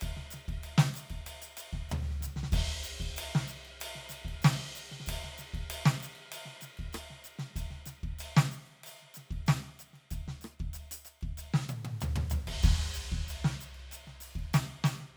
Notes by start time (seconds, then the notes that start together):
0.01 kick, ride, percussion
0.17 snare
0.31 snare, ride, percussion
0.49 kick, ride
0.63 ride, percussion
0.78 snare
0.94 ride, percussion
1.10 kick, ride
1.27 ride, percussion
1.42 percussion
1.57 ride, percussion
1.73 kick, snare
1.90 floor tom, percussion
2.03 snare
2.11 snare
2.15 snare
2.21 kick, snare, percussion
2.27 snare
2.37 snare
2.44 snare
2.52 kick, percussion, ride
2.84 ride, percussion
3.00 kick, ride
3.17 ride, percussion
3.35 snare
3.48 ride, percussion
3.65 ride
3.81 ride, percussion
3.96 snare
4.10 snare, ride, percussion
4.25 kick, ride
4.42 snare, percussion, ride
4.63 snare
4.76 ride, percussion
4.92 snare
5.00 snare
5.07 kick, ride, percussion
5.25 snare
5.38 snare, ride, percussion
5.54 kick, ride
5.71 ride, percussion
5.86 snare
6.01 ride, percussion
6.16 ride
6.32 ride, percussion
6.46 snare
6.61 snare, ride, percussion
6.78 kick, ride
6.93 cross-stick, ride, percussion
7.11 snare
7.25 ride, percussion
7.39 snare, ride
7.56 kick, ride bell, percussion
7.71 snare
7.86 snare, ride, percussion
8.04 kick, ride
8.19 ride bell, percussion
8.37 snare
8.52 percussion
8.67 ride
8.84 ride, percussion
9.03 snare
9.15 snare, ride, percussion
9.31 kick, ride
9.47 snare, ride bell, percussion
9.62 snare
9.65 snare
9.80 ride, percussion
9.94 snare, ride
10.11 kick, ride bell, percussion
10.28 snare
10.41 cross-stick, ride, percussion
10.60 kick, ride
10.74 ride bell, percussion
10.92 percussion
11.05 ride, percussion
11.22 kick, ride
11.38 ride bell, percussion
11.54 snare
11.69 high tom, percussion
11.85 high tom
12.01 floor tom, percussion
12.16 floor tom
12.30 floor tom, percussion
12.48 kick, ride
12.63 kick, percussion, crash
12.94 percussion
13.01 ride
13.12 kick, ride
13.29 ride bell, percussion
13.45 snare
13.60 ride, percussion
13.75 ride
13.92 ride bell, percussion
14.07 snare
14.21 ride, percussion
14.36 kick, ride
14.54 snare, ride, percussion
14.84 snare, ride bell, percussion
15.00 snare